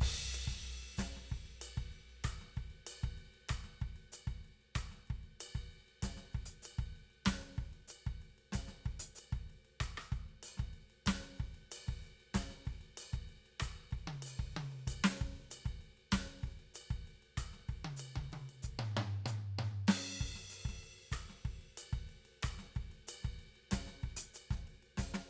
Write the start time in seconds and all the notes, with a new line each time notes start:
0.01 kick, crash, ride
0.32 hi-hat pedal, ride bell
0.48 kick
0.52 snare
0.66 ride
0.83 ride
0.97 kick, snare, hi-hat pedal, ride bell
1.17 snare
1.31 kick, ride
1.46 ride
1.62 hi-hat pedal, ride bell
1.77 kick, snare
1.92 ride
2.10 ride
2.24 kick, cross-stick, hi-hat pedal, ride bell
2.41 snare
2.57 kick, ride
2.71 ride
2.87 hi-hat pedal, ride bell
3.03 kick, snare
3.18 ride
3.34 ride
3.49 kick, cross-stick, hi-hat pedal, ride bell
3.64 snare
3.81 kick, ride
3.96 ride
4.12 hi-hat pedal, ride bell
4.27 kick, snare
4.45 ride
4.62 ride
4.75 kick, cross-stick, hi-hat pedal, ride bell
4.91 snare
5.08 kick, ride
5.24 ride
5.40 hi-hat pedal, ride bell
5.55 kick, snare
5.73 ride
5.89 ride
6.03 kick, snare, hi-hat pedal, ride bell
6.17 snare
6.34 kick, ride
6.46 closed hi-hat
6.50 ride
6.63 hi-hat pedal, ride bell
6.79 kick
6.97 ride
7.11 ride
7.26 kick, snare, hi-hat pedal, ride bell
7.42 snare
7.58 kick, ride
7.73 ride
7.88 hi-hat pedal, ride bell
8.07 kick, snare
8.22 ride
8.38 ride
8.53 kick, snare, hi-hat pedal, ride bell
8.68 snare
8.86 kick, ride
9.00 closed hi-hat, ride
9.16 hi-hat pedal, ride bell
9.33 kick, snare
9.50 ride
9.65 ride
9.81 kick, cross-stick, hi-hat pedal, ride bell
9.98 cross-stick
10.12 kick, ride bell
10.29 ride
10.43 hi-hat pedal, ride bell
10.57 kick, snare
10.74 ride
10.90 ride
11.07 kick, snare, hi-hat pedal, ride bell
11.23 snare
11.39 kick, ride
11.55 ride
11.72 hi-hat pedal, ride bell
11.87 kick, snare
12.05 ride
12.21 ride
12.34 kick, snare, hi-hat pedal, ride bell
12.50 snare
12.66 kick, ride
12.81 ride
12.98 hi-hat pedal, ride bell
13.12 kick, snare
13.29 ride
13.46 ride
13.60 kick, cross-stick, hi-hat pedal, ride bell
13.91 kick, ride
14.08 high tom, ride
14.23 hi-hat pedal, ride bell
14.39 kick
14.57 high tom, ride
14.72 ride
14.87 kick, hi-hat pedal, ride bell
15.04 snare
15.21 kick
15.37 ride
15.51 hi-hat pedal, ride bell
15.65 kick, snare
15.81 ride
15.98 ride
16.12 kick, snare, hi-hat pedal, ride bell
16.30 snare
16.44 kick, ride
16.48 snare
16.60 ride
16.74 hi-hat pedal, ride bell
16.90 kick, snare
17.08 ride
17.23 ride
17.38 kick, cross-stick, hi-hat pedal, ride bell
17.53 snare
17.69 kick, ride
17.85 high tom, ride
17.97 hi-hat pedal, ride bell
18.16 kick, high tom
18.33 high tom, ride
18.49 ride bell
18.63 kick, hi-hat pedal, ride
18.79 mid tom
18.97 mid tom
19.26 hi-hat pedal, mid tom
19.59 mid tom
19.88 snare, crash
20.21 kick, ride
20.36 snare
20.50 hi-hat pedal, ride
20.65 kick, snare
20.84 ride
20.99 ride
21.12 kick, cross-stick, hi-hat pedal, ride bell
21.30 snare
21.45 kick, ride
21.61 ride
21.78 hi-hat pedal, ride bell
21.93 kick, snare
22.09 ride
22.26 ride
22.43 kick, cross-stick, hi-hat pedal, ride bell
22.59 snare
22.76 kick, ride
22.92 ride
23.08 hi-hat pedal, ride bell
23.23 kick, snare
23.39 ride
23.56 ride
23.72 kick, snare, hi-hat pedal, ride bell
23.88 snare
24.03 kick, ride
24.17 closed hi-hat, ride
24.34 hi-hat pedal, ride bell
24.51 kick, snare
24.68 ride
24.83 ride
24.98 kick, snare, hi-hat pedal, ride
25.14 snare